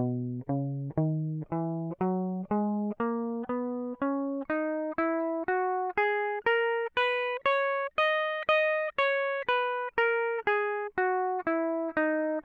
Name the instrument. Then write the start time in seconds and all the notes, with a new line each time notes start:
electric guitar
0.00 B2
0.51 C#3
0.99 D#3
1.53 E3
2.02 F#3
2.52 G#3
3.01 A#3
3.50 B3
4.02 C#4
4.50 D#4
4.99 E4
5.49 F#4
5.98 G#4
6.47 A#4
6.97 B4
7.46 C#5
7.98 D#5
8.49 D#5
8.99 C#5
9.49 B4
9.98 A#4
10.47 G#4
10.98 F#4
11.47 E4
11.97 D#4